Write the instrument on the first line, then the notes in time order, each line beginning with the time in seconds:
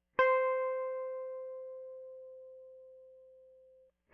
electric guitar
0.19 C5